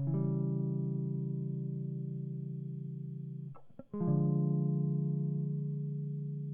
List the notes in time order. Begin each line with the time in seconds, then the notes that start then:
0.00 C#3
0.07 E3
0.14 G3
3.94 G#3
4.01 F3
4.08 D3